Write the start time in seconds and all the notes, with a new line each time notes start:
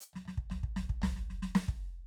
0.01 hi-hat pedal
0.13 snare, floor tom
0.26 snare, floor tom
0.38 kick
0.50 snare, floor tom
0.63 kick
0.76 snare, floor tom
0.90 kick
1.02 snare, floor tom
1.16 snare
1.30 snare
1.43 snare
1.55 snare
1.68 kick